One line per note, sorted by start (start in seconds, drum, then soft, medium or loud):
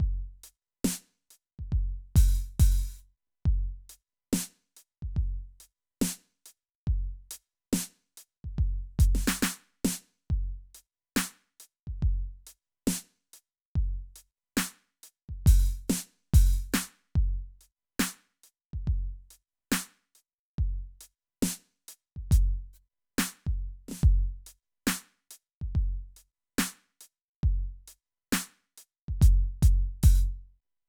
0.01 kick medium
0.01 crash soft
0.01 ride soft
0.44 closed hi-hat medium
0.85 snare loud
1.31 closed hi-hat medium
1.60 kick soft
1.73 kick medium
1.73 crash soft
1.73 ride soft
2.17 open hi-hat loud
2.17 kick loud
2.61 open hi-hat loud
2.61 kick loud
2.97 hi-hat pedal soft
3.46 kick medium
3.90 closed hi-hat medium
4.34 snare loud
4.78 closed hi-hat medium
5.03 kick soft
5.17 kick medium
5.17 snare soft
5.17 crash soft
5.61 closed hi-hat medium
6.02 snare loud
6.47 closed hi-hat medium
6.88 kick medium
7.32 closed hi-hat loud
7.74 snare loud
8.18 closed hi-hat medium
8.45 kick soft
8.59 kick medium
8.59 snare soft
8.59 crash soft
8.59 ride soft
9.00 closed hi-hat loud
9.00 kick loud
9.16 snare medium
9.28 snare loud
9.43 snare loud
9.86 snare loud
10.31 kick medium
10.76 closed hi-hat medium
11.17 snare loud
11.61 closed hi-hat medium
11.88 kick soft
12.03 kick medium
12.48 closed hi-hat medium
12.88 snare loud
13.34 closed hi-hat medium
13.76 kick medium
13.76 snare soft
13.76 crash soft
14.17 closed hi-hat medium
14.58 snare loud
15.04 closed hi-hat medium
15.30 kick soft
15.47 open hi-hat loud
15.47 kick loud
15.89 snare loud
15.89 hi-hat pedal soft
16.35 open hi-hat loud
16.35 kick loud
16.73 snare loud
16.73 hi-hat pedal soft
17.16 kick medium
17.62 closed hi-hat soft
18.00 snare loud
18.44 closed hi-hat medium
18.74 kick soft
18.88 kick medium
18.88 snare soft
18.88 crash soft
18.88 ride soft
19.31 closed hi-hat medium
19.73 snare loud
20.16 closed hi-hat soft
20.59 kick medium
21.02 closed hi-hat medium
21.43 snare loud
21.89 closed hi-hat loud
22.17 kick soft
22.32 closed hi-hat loud
22.32 kick loud
22.74 hi-hat pedal soft
23.19 snare loud
23.48 kick medium
23.89 snare soft
23.92 snare medium
24.01 kick soft
24.04 kick loud
24.47 closed hi-hat medium
24.88 snare loud
25.32 closed hi-hat medium
25.62 kick soft
25.76 kick medium
25.76 snare soft
25.76 crash soft
25.76 ride soft
26.17 closed hi-hat medium
26.59 snare loud
27.02 closed hi-hat medium
27.44 kick medium
27.89 closed hi-hat medium
28.33 snare loud
28.79 closed hi-hat medium
29.09 kick medium
29.23 closed hi-hat loud
29.23 kick loud
29.63 closed hi-hat loud
29.63 kick loud
30.04 open hi-hat loud
30.04 kick loud